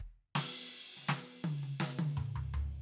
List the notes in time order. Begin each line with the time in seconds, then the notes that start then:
0.00 kick
0.35 snare, ride
0.97 snare
1.01 snare
1.05 snare
1.08 snare
1.44 high tom
1.63 high tom
1.80 snare
1.99 open hi-hat, high tom
2.17 mid tom
2.36 floor tom
2.54 floor tom